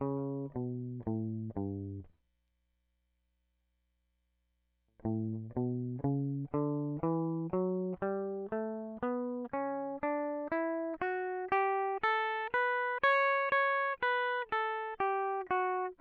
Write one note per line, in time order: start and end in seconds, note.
0.02 0.50 C#3
0.57 1.05 B2
1.09 1.54 A2
1.58 2.04 G2
5.07 5.57 A2
5.58 6.03 B2
6.06 6.49 C#3
6.55 7.00 D3
7.04 7.51 E3
7.54 7.97 F#3
8.03 8.50 G3
8.53 9.01 A3
9.03 9.50 B3
9.54 10.01 C#4
10.03 10.51 D4
10.52 10.98 E4
11.02 11.50 F#4
11.52 11.99 G4
12.04 12.52 A4
12.54 13.01 B4
13.04 13.52 C#5
13.52 13.97 C#5
14.03 14.46 B4
14.53 14.97 A4
15.00 15.50 G4
15.51 15.93 F#4